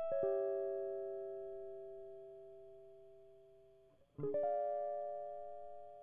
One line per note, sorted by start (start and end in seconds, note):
0.00 3.92 E5
0.12 2.03 C#5
0.23 2.83 G4
4.24 6.03 G#4
4.34 6.03 D5
4.44 6.03 F5